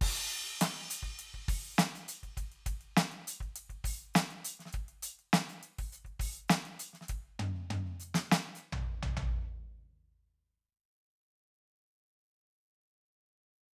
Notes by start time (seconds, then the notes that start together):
0.01 kick, crash, ride
0.34 closed hi-hat
0.46 closed hi-hat
0.61 snare, closed hi-hat
0.76 closed hi-hat
0.90 closed hi-hat
1.02 kick, closed hi-hat
1.19 closed hi-hat
1.34 kick, closed hi-hat
1.48 open hi-hat, kick
1.78 snare, closed hi-hat, hi-hat pedal
1.83 cross-stick
1.95 closed hi-hat
2.08 closed hi-hat
2.23 kick, closed hi-hat
2.37 kick, closed hi-hat
2.52 closed hi-hat
2.66 kick, closed hi-hat
2.81 closed hi-hat
2.97 snare, closed hi-hat
3.11 closed hi-hat
3.27 closed hi-hat
3.40 kick, closed hi-hat
3.56 closed hi-hat
3.69 kick, closed hi-hat
3.84 open hi-hat, kick
4.14 snare, closed hi-hat, hi-hat pedal
4.30 closed hi-hat
4.44 closed hi-hat
4.59 snare, closed hi-hat
4.65 snare
4.72 kick, closed hi-hat
4.88 closed hi-hat
5.02 closed hi-hat
5.19 closed hi-hat
5.33 snare, closed hi-hat
5.38 snare
5.49 closed hi-hat
5.63 closed hi-hat
5.78 kick, open hi-hat
5.92 hi-hat pedal
6.04 kick, closed hi-hat
6.19 open hi-hat, kick
6.48 snare, closed hi-hat, hi-hat pedal
6.65 closed hi-hat
6.79 closed hi-hat
6.93 snare, closed hi-hat
7.01 snare
7.08 kick, closed hi-hat
7.39 high tom
7.54 snare
7.70 high tom
7.85 snare
8.00 hi-hat pedal
8.14 snare
8.31 snare
8.55 hi-hat pedal
8.72 floor tom
9.02 floor tom
9.17 floor tom